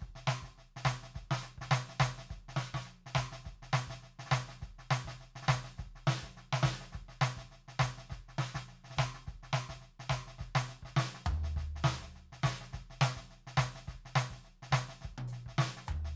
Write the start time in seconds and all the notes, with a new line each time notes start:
0.01 kick, snare
0.09 kick
0.16 snare
0.28 snare, hi-hat pedal
0.43 kick, snare
0.59 snare
0.77 snare
0.86 kick, snare, hi-hat pedal
1.03 snare
1.15 kick, snare
1.23 kick
1.25 kick
1.32 snare
1.43 snare, hi-hat pedal
1.59 kick, snare
1.72 snare
1.90 snare
2.01 kick, snare, hi-hat pedal
2.19 snare
2.30 kick, snare
2.38 kick
2.49 snare
2.57 snare, hi-hat pedal
2.74 kick, snare
2.87 snare
3.07 snare
3.16 kick, snare, hi-hat pedal
3.24 kick
3.33 snare
3.45 kick, snare
3.63 snare
3.74 snare, hi-hat pedal
3.88 kick, snare
4.03 snare
4.20 snare
4.27 snare
4.32 kick, snare, hi-hat pedal
4.38 kick
4.49 snare
4.62 kick, snare
4.72 kick
4.79 snare
4.91 snare, hi-hat pedal
5.06 kick, snare
5.11 kick
5.21 snare
5.36 snare
5.43 snare
5.49 kick, snare, hi-hat pedal
5.65 snare
5.79 kick, snare
5.86 kick
5.96 snare
6.07 snare, hi-hat pedal
6.24 kick, snare
6.38 snare
6.53 snare
6.64 kick, snare, hi-hat pedal
6.74 kick
6.81 snare
6.93 kick, snare
7.02 kick
7.09 snare
7.22 snare, hi-hat pedal
7.37 kick, snare
7.52 snare
7.69 snare
7.80 kick, snare, hi-hat pedal
7.98 snare
8.11 kick, snare
8.19 kick
8.29 snare
8.39 snare, hi-hat pedal
8.55 kick, snare
8.69 snare
8.74 snare
8.78 snare
8.84 snare
8.91 snare
8.97 kick, snare, hi-hat pedal
9.15 snare
9.27 kick, snare
9.35 kick
9.44 snare
9.54 snare, hi-hat pedal
9.70 kick, snare
9.82 snare
10.00 snare
10.10 kick, snare, hi-hat pedal
10.28 snare
10.39 kick, snare
10.48 kick
10.56 snare
10.68 snare, hi-hat pedal
10.83 kick, snare
10.97 snare
11.15 snare
11.26 kick, hi-hat pedal, floor tom
11.44 snare
11.57 kick, snare
11.64 kick
11.77 snare
11.84 snare, hi-hat pedal
12.02 kick, snare
12.16 snare
12.33 snare
12.43 kick, snare, hi-hat pedal
12.62 snare
12.74 kick, snare
12.81 kick
12.91 snare
13.02 snare, hi-hat pedal
13.17 kick, snare
13.31 snare
13.48 snare
13.58 kick, snare, hi-hat pedal
13.67 kick
13.76 snare
13.88 kick, snare
13.95 kick
14.06 snare
14.16 snare, hi-hat pedal
14.31 kick, snare
14.45 snare
14.63 snare
14.72 kick, snare, hi-hat pedal
14.90 snare
15.02 kick, snare
15.11 kick
15.16 kick, high tom
15.28 hi-hat pedal
15.33 snare
15.47 kick, snare
15.59 snare
15.77 snare
15.87 kick, floor tom, hi-hat pedal
15.95 kick
15.98 kick
16.05 snare